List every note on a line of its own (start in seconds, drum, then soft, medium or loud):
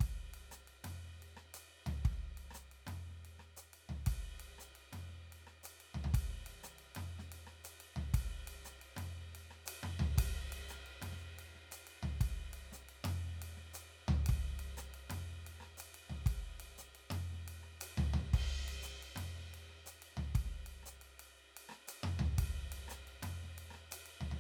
0.01 kick medium
0.01 ride medium
0.17 snare soft
0.34 ride medium
0.51 cross-stick soft
0.51 snare soft
0.51 hi-hat pedal medium
0.68 ride soft
0.85 mid tom medium
0.85 ride medium
1.03 snare soft
1.23 ride soft
1.36 cross-stick soft
1.36 snare soft
1.54 hi-hat pedal medium
1.54 ride medium
1.87 floor tom medium
1.87 ride soft
2.05 kick medium
2.05 ride soft
2.12 snare soft
2.38 ride soft
2.51 cross-stick soft
2.51 hi-hat pedal medium
2.55 cross-stick soft
2.72 ride soft
2.87 mid tom medium
2.87 ride medium
3.10 snare soft
3.25 ride soft
3.39 cross-stick soft
3.39 snare soft
3.57 hi-hat pedal medium
3.57 ride soft
3.74 ride medium
3.90 floor tom medium
4.07 kick medium
4.07 ride medium
4.26 snare soft
4.40 ride medium
4.58 cross-stick soft
4.58 snare soft
4.58 hi-hat pedal medium
4.76 ride soft
4.93 mid tom medium
4.93 ride medium
5.09 snare soft
5.33 ride soft
5.47 cross-stick soft
5.47 snare soft
5.64 hi-hat pedal medium
5.64 ride medium
5.81 ride soft
5.95 floor tom medium
6.05 floor tom medium
6.14 kick medium
6.14 ride medium
6.35 snare soft
6.47 ride medium
6.63 cross-stick soft
6.63 snare soft
6.63 hi-hat pedal medium
6.79 ride soft
6.96 mid tom medium
6.96 ride medium
7.19 snare soft
7.32 ride medium
7.47 cross-stick soft
7.58 snare soft
7.65 hi-hat pedal medium
7.65 ride medium
7.81 ride medium
7.97 floor tom medium
8.14 kick medium
8.14 ride medium
8.28 snare soft
8.48 ride medium
8.65 cross-stick soft
8.65 snare soft
8.65 hi-hat pedal medium
8.82 ride soft
8.97 mid tom medium
8.97 ride medium
9.21 snare soft
9.35 ride medium
9.50 cross-stick soft
9.50 snare soft
9.66 hi-hat pedal medium
9.66 ride loud
9.83 mid tom medium
10.00 floor tom medium
10.18 kick medium
10.18 snare soft
10.18 ride loud
10.53 ride medium
10.69 cross-stick soft
10.69 snare soft
10.69 hi-hat pedal medium
10.87 ride soft
11.02 mid tom medium
11.02 ride medium
11.12 snare soft
11.18 hi-hat pedal soft
11.39 ride medium
11.55 snare soft
11.72 hi-hat pedal medium
11.72 ride medium
11.87 ride medium
12.03 floor tom medium
12.21 kick medium
12.21 ride medium
12.29 snare soft
12.54 ride medium
12.72 snare soft
12.72 hi-hat pedal medium
12.89 ride soft
13.05 mid tom medium
13.05 ride medium
13.42 ride medium
13.57 snare soft
13.63 ride soft
13.74 hi-hat pedal medium
13.74 ride medium
14.09 floor tom loud
14.27 kick medium
14.27 ride medium
14.60 ride medium
14.78 cross-stick soft
14.78 cross-stick medium
14.78 hi-hat pedal medium
14.94 ride medium
15.10 mid tom medium
15.10 ride medium
15.25 snare soft
15.47 ride medium
15.61 cross-stick soft
15.63 cross-stick soft
15.78 hi-hat pedal medium
15.78 ride medium
15.95 ride medium
16.10 floor tom medium
16.26 kick medium
16.26 ride medium
16.35 snare soft
16.60 ride medium
16.77 snare soft
16.77 hi-hat pedal medium
16.95 ride soft
17.11 mid tom medium
17.11 ride medium
17.33 snare soft
17.48 ride medium
17.63 cross-stick soft
17.81 hi-hat pedal medium
17.81 ride loud
17.98 floor tom loud
18.14 floor tom medium
18.34 kick medium
18.34 ride medium
18.56 snare soft
18.69 ride medium
18.83 cross-stick soft
18.83 snare soft
18.83 hi-hat pedal medium
19.03 ride medium
19.16 mid tom medium
19.16 ride medium
19.40 snare soft
19.45 snare soft
19.54 ride medium
19.70 cross-stick soft
19.86 hi-hat pedal medium
19.86 ride medium
20.03 ride medium
20.17 floor tom medium
20.35 kick medium
20.35 ride medium
20.46 snare soft
20.67 ride medium
20.83 cross-stick soft
20.83 hi-hat pedal medium
21.02 ride soft
21.20 ride medium
21.37 hi-hat pedal soft
21.57 ride medium
21.69 cross-stick medium
21.72 cross-stick medium
21.88 hi-hat pedal medium
21.88 ride medium
22.04 mid tom medium
22.20 floor tom medium
22.39 kick medium
22.39 ride loud
22.72 ride medium
22.89 cross-stick medium
22.89 hi-hat pedal medium
22.92 cross-stick medium
23.08 ride soft
23.23 mid tom medium
23.23 ride medium
23.44 snare soft
23.58 ride medium
23.71 cross-stick soft
23.74 cross-stick soft
23.92 hi-hat pedal medium
23.92 ride loud
24.06 ride medium
24.21 floor tom medium
24.32 floor tom medium